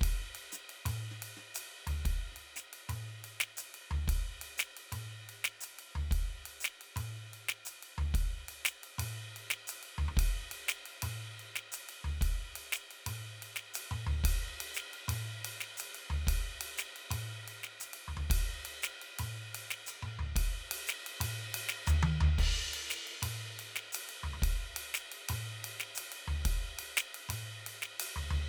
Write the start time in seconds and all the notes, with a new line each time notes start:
0.01 kick, ride
0.21 snare
0.35 ride
0.52 snare, hi-hat pedal
0.69 ride
0.85 mid tom, ride
1.11 snare
1.22 ride
1.37 snare
1.54 hi-hat pedal, ride
1.87 floor tom, ride
2.05 kick, ride
2.32 snare
2.36 ride
2.56 snare, hi-hat pedal
2.73 ride
2.89 mid tom, ride
3.24 ride
3.40 snare
3.57 hi-hat pedal, ride
3.74 ride
3.91 floor tom
4.08 kick, ride
4.41 ride
4.58 snare, hi-hat pedal
4.77 ride
4.92 mid tom, ride
5.29 ride
5.44 snare
5.61 hi-hat pedal, ride
5.79 ride
5.95 floor tom
6.11 kick, ride
6.46 ride
6.60 hi-hat pedal
6.64 snare
6.81 ride
6.96 mid tom, ride
7.33 ride
7.49 snare
7.65 hi-hat pedal, ride
7.83 ride
7.98 floor tom
8.14 kick, ride
8.48 ride
8.65 snare, hi-hat pedal
8.83 ride
8.98 mid tom, ride
9.36 ride
9.50 snare
9.67 hi-hat pedal, ride
9.83 ride
9.98 floor tom
10.08 floor tom
10.17 kick, ride
10.51 ride
10.68 snare, hi-hat pedal
10.86 ride
11.02 mid tom, ride
11.39 ride
11.56 snare
11.72 hi-hat pedal, ride
11.89 ride
12.04 floor tom
12.21 kick, ride
12.56 ride
12.72 snare, hi-hat pedal
12.91 ride
13.06 mid tom, ride
13.42 ride
13.56 snare
13.74 hi-hat pedal, ride
13.91 mid tom
14.07 floor tom
14.24 kick, ride
14.60 ride
14.74 snare, hi-hat pedal
14.93 ride
15.08 mid tom, ride
15.45 ride
15.61 snare
15.77 hi-hat pedal, ride
15.95 ride
16.10 floor tom
16.27 kick, ride
16.61 ride
16.78 snare, hi-hat pedal
16.96 ride
17.10 mid tom, ride
17.48 ride
17.63 snare
17.80 hi-hat pedal, ride
17.93 ride
18.08 floor tom
18.17 floor tom
18.30 kick, ride
18.65 ride
18.82 snare, hi-hat pedal
19.02 ride
19.19 mid tom, ride
19.55 ride
19.71 snare
19.86 hi-hat pedal, ride bell
20.02 mid tom
20.19 floor tom
20.36 kick, ride
20.71 ride
20.87 snare, hi-hat pedal
21.06 ride
21.20 mid tom, ride
21.54 ride
21.69 snare
21.87 floor tom, hi-hat pedal
22.03 high tom
22.21 floor tom
22.38 kick, ride
22.73 ride
22.90 snare, hi-hat pedal
23.07 ride
23.22 mid tom, ride
23.59 ride
23.76 snare
23.92 hi-hat pedal, ride
24.09 ride
24.23 floor tom
24.33 floor tom
24.42 kick, ride
24.76 ride
24.94 snare, hi-hat pedal
25.12 ride
25.29 mid tom, ride
25.64 ride
25.80 snare
25.95 hi-hat pedal, ride
26.12 ride
26.28 floor tom
26.45 kick, ride
26.79 ride
26.97 snare, hi-hat pedal
27.15 ride
27.29 mid tom, ride
27.66 ride
27.82 snare
28.00 hi-hat pedal, ride
28.16 floor tom
28.31 floor tom